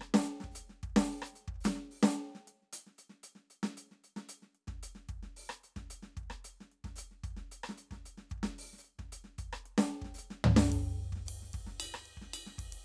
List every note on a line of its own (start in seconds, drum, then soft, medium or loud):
0.01 cross-stick medium
0.14 snare loud
0.24 snare soft
0.24 hi-hat pedal medium
0.40 kick soft
0.40 snare soft
0.51 kick soft
0.51 hi-hat pedal soft
0.55 closed hi-hat medium
0.70 snare soft
0.83 kick soft
0.83 closed hi-hat soft
0.90 kick soft
0.96 snare loud
1.09 open hi-hat medium
1.22 cross-stick medium
1.22 hi-hat pedal medium
1.35 closed hi-hat soft
1.48 kick soft
1.54 kick soft
1.61 closed hi-hat medium
1.61 hi-hat pedal soft
1.65 snare medium
1.75 snare soft
1.91 open hi-hat soft
2.03 snare loud
2.09 hi-hat pedal medium
2.35 snare soft
2.47 closed hi-hat medium
2.62 snare soft
2.73 closed hi-hat loud
2.87 snare soft
2.98 closed hi-hat soft
3.10 snare soft
3.23 closed hi-hat medium
3.35 snare soft
3.50 closed hi-hat soft
3.63 snare medium
3.77 closed hi-hat medium
3.91 snare soft
4.04 closed hi-hat soft
4.16 snare soft
4.29 closed hi-hat medium
4.42 snare soft
4.55 closed hi-hat soft
4.67 kick soft
4.67 snare soft
4.83 closed hi-hat medium
4.95 snare soft
5.09 kick soft
5.09 closed hi-hat soft
5.23 snare soft
5.37 open hi-hat medium
5.49 cross-stick medium
5.49 hi-hat pedal soft
5.64 closed hi-hat soft
5.76 kick soft
5.76 snare soft
5.90 closed hi-hat medium
6.03 snare soft
6.17 kick soft
6.17 closed hi-hat soft
6.23 kick soft
6.30 cross-stick medium
6.45 closed hi-hat medium
6.61 snare soft
6.72 closed hi-hat soft
6.84 kick soft
6.84 snare soft
6.96 closed hi-hat medium
6.96 hi-hat pedal medium
7.11 snare soft
7.24 closed hi-hat soft
7.24 kick medium
7.31 kick soft
7.37 snare soft
7.52 closed hi-hat medium
7.64 cross-stick medium
7.69 snare soft
7.78 closed hi-hat soft
7.91 kick soft
7.91 snare soft
8.06 closed hi-hat medium
8.18 snare soft
8.30 closed hi-hat soft
8.30 kick soft
8.38 kick soft
8.43 snare medium
8.58 open hi-hat medium
8.73 snare soft
8.78 hi-hat pedal medium
8.84 closed hi-hat soft
8.99 kick soft
8.99 snare soft
9.12 closed hi-hat medium
9.24 snare soft
9.38 closed hi-hat soft
9.38 kick soft
9.53 cross-stick medium
9.66 closed hi-hat soft
9.77 kick soft
9.77 snare medium
9.91 closed hi-hat soft
10.02 kick soft
10.02 snare soft
10.14 hi-hat pedal medium
10.18 closed hi-hat medium
10.30 snare soft
10.44 floor tom loud
10.57 snare loud
10.65 hi-hat pedal soft
10.70 kick medium
10.70 ride medium
10.75 kick soft
11.12 kick soft
11.12 snare soft
11.26 hi-hat pedal soft
11.26 ride medium
11.42 snare soft
11.53 kick soft
11.53 ride medium
11.61 kick soft
11.67 snare soft
11.80 hi-hat pedal medium
11.80 ride bell loud
11.94 cross-stick medium
12.06 ride soft
12.17 kick soft
12.22 snare soft
12.34 hi-hat pedal medium
12.34 ride bell loud
12.47 snare soft
12.55 kick soft
12.55 cross-stick soft
12.59 ride medium
12.73 ride medium